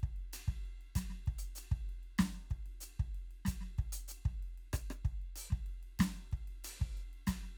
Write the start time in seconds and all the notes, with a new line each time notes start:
0.01 kick, ride
0.17 ride
0.34 hi-hat pedal, ride bell
0.48 kick, snare
0.66 ride
0.82 ride
0.96 kick, snare, hi-hat pedal, ride bell
1.10 snare
1.27 kick, ride
1.39 closed hi-hat
1.43 ride
1.56 hi-hat pedal, ride bell
1.72 kick
1.90 ride
2.04 ride
2.19 kick, snare, hi-hat pedal, ride bell
2.35 snare
2.51 kick, ride
2.67 ride
2.81 hi-hat pedal, ride bell
3.00 kick, snare
3.15 ride
3.32 ride
3.46 kick, snare, hi-hat pedal, ride bell
3.61 snare
3.79 kick, ride
3.93 closed hi-hat, ride
4.09 hi-hat pedal, ride bell
4.26 kick, snare
4.43 ride
4.58 ride
4.74 kick, cross-stick, hi-hat pedal, ride bell
4.91 cross-stick
5.05 kick, ride bell
5.22 ride
5.36 hi-hat pedal, ride bell
5.51 kick, snare
5.67 ride
5.84 ride
6.00 kick, snare, hi-hat pedal, ride bell
6.16 snare
6.32 kick, ride
6.48 ride
6.65 hi-hat pedal, ride bell
6.80 kick, snare
6.98 ride
7.14 ride
7.27 kick, snare, hi-hat pedal, ride bell
7.43 snare